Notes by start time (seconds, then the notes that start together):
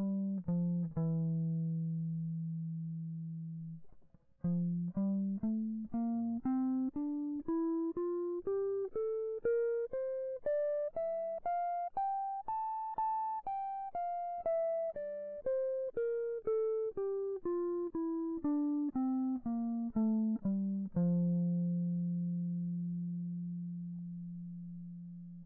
0.00 G3
0.49 F3
0.98 E3
4.47 F3
4.98 G3
5.44 A3
5.95 A#3
6.46 C4
6.96 D4
7.49 E4
7.97 F4
8.47 G4
8.96 A4
9.46 A#4
9.94 C5
10.47 D5
10.97 E5
11.46 F5
11.97 G5
12.49 A5
12.98 A5
13.47 G5
13.95 F5
14.46 E5
14.96 D5
15.47 C5
15.97 A#4
16.48 A4
16.98 G4
17.46 F4
17.95 E4
18.45 D4
18.96 C4
19.47 A#3
19.97 A3
20.46 G3
20.98 F3